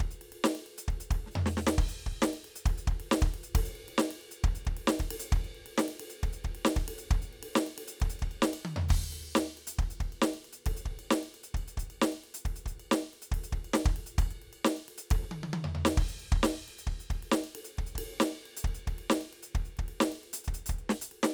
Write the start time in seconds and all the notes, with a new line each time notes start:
0.01 kick, ride
0.12 closed hi-hat
0.22 ride
0.33 ride
0.45 snare
0.56 ride
0.67 ride
0.79 closed hi-hat
0.89 kick, ride
1.01 closed hi-hat
1.11 kick, ride
1.27 snare
1.32 hi-hat pedal
1.36 floor tom
1.47 snare
1.58 snare
1.68 snare
1.79 kick, crash
1.89 closed hi-hat
2.01 ride
2.07 kick
2.13 ride
2.23 snare
2.34 ride
2.45 ride
2.56 closed hi-hat
2.66 kick, ride
2.79 closed hi-hat
2.88 kick, ride
3.01 ride
3.12 snare
3.22 kick, ride
3.35 ride
3.44 closed hi-hat
3.56 kick, ride
3.66 closed hi-hat
3.76 ride
3.89 ride
3.99 snare
4.12 ride
4.22 ride
4.32 closed hi-hat
4.45 kick, ride
4.56 closed hi-hat
4.66 kick, ride
4.78 ride
4.88 snare
5.00 kick, ride
5.12 ride
5.20 closed hi-hat
5.33 kick, ride
5.45 closed hi-hat
5.56 ride
5.67 ride
5.79 snare
5.89 ride
6.01 ride
6.11 closed hi-hat
6.24 kick, ride
6.34 closed hi-hat
6.45 kick, ride
6.56 ride
6.66 snare
6.77 kick, ride
6.89 ride
6.99 closed hi-hat
7.12 kick, ride
7.23 closed hi-hat
7.34 ride
7.44 ride
7.53 snare, hi-hat pedal
7.67 ride
7.79 ride
7.89 closed hi-hat
8.01 kick, ride
8.11 closed hi-hat
8.20 kick, ride bell
8.32 ride bell
8.43 snare
8.54 ride bell
8.66 high tom
8.77 floor tom
8.90 kick, crash
9.13 ride
9.24 ride
9.36 snare
9.58 ride
9.68 closed hi-hat
9.79 kick, ride
9.91 closed hi-hat
10.01 kick, ride
10.13 ride bell
10.23 snare
10.35 ride
10.45 ride bell
10.54 closed hi-hat
10.67 kick, ride
10.78 closed hi-hat
10.86 kick
11.00 ride bell
11.12 snare
11.24 ride
11.35 ride bell
11.44 closed hi-hat
11.55 kick, ride bell
11.69 closed hi-hat
11.78 closed hi-hat, kick
11.91 ride bell
12.03 snare
12.13 ride bell
12.25 ride
12.35 closed hi-hat
12.46 kick, ride
12.57 closed hi-hat
12.67 closed hi-hat, kick
12.81 ride bell
12.92 snare
13.14 ride
13.23 closed hi-hat
13.32 kick, ride
13.44 closed hi-hat
13.53 kick, ride
13.65 ride bell
13.74 snare
13.86 kick, ride
13.97 ride
14.07 closed hi-hat
14.19 kick, ride bell
14.32 closed hi-hat
14.43 ride
14.54 ride bell
14.66 snare
14.77 ride bell
14.89 ride
14.99 closed hi-hat
15.11 kick, ride
15.23 snare
15.32 high tom
15.44 high tom
15.54 high tom
15.65 floor tom
15.76 floor tom
15.86 snare
15.98 kick, crash
16.09 closed hi-hat
16.20 closed hi-hat
16.33 kick
16.44 snare, crash
16.69 ride
16.79 closed hi-hat
16.88 kick
16.93 ride
17.01 closed hi-hat
17.11 kick, ride
17.24 ride
17.33 snare
17.45 ride bell
17.56 ride
17.65 closed hi-hat
17.79 kick, ride
17.87 closed hi-hat
17.96 kick, ride
18.21 snare, ride
18.47 ride
18.58 closed hi-hat
18.65 kick, ride
18.75 closed hi-hat
18.88 kick, ride
18.99 ride
19.11 snare
19.22 ride
19.34 ride
19.44 closed hi-hat
19.56 kick, ride
19.66 closed hi-hat
19.78 kick, ride
19.89 ride
20.01 snare
20.13 ride
20.24 ride
20.34 closed hi-hat
20.45 closed hi-hat, kick
20.55 closed hi-hat
20.67 closed hi-hat, kick
20.79 closed hi-hat
20.90 snare
21.02 closed hi-hat
21.12 ride
21.24 snare